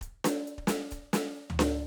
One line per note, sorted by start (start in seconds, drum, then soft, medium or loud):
0.01 kick soft
0.01 closed hi-hat medium
0.24 closed hi-hat loud
0.24 snare loud
0.47 closed hi-hat medium
0.58 kick soft
0.67 closed hi-hat loud
0.67 snare loud
0.91 closed hi-hat medium
0.91 kick soft
1.13 closed hi-hat loud
1.13 snare loud
1.33 snare soft
1.33 closed hi-hat soft
1.50 floor tom loud
1.59 snare loud
1.74 snare soft